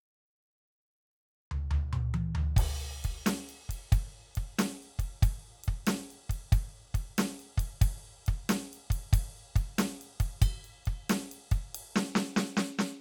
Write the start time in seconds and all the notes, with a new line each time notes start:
1.51 floor tom
1.71 floor tom
1.93 mid tom
2.14 high tom
2.35 floor tom
2.56 kick, ride, crash
2.81 ride
3.04 kick, ride
3.26 snare, ride
3.49 ride
3.69 kick, ride
3.92 kick, ride
4.35 kick, ride
4.59 snare, ride
4.82 ride
4.99 kick, ride
5.22 kick, ride
5.64 kick, ride
5.87 snare, ride
6.10 ride
6.29 kick, ride
6.52 kick, ride
6.94 kick, ride
7.18 snare, ride
7.39 ride
7.57 kick, ride
7.81 kick, ride
8.26 kick, ride
8.49 snare, ride
8.73 ride
8.90 kick, ride
9.13 kick, ride
9.37 ride
9.56 kick, ride
9.78 snare, ride
10.01 ride
10.20 kick, ride
10.42 kick, ride bell
10.64 ride
10.86 kick, ride
11.10 snare, ride
11.32 ride
11.51 kick, ride
11.75 ride
11.96 snare
12.15 snare
12.36 snare
12.57 snare
12.79 snare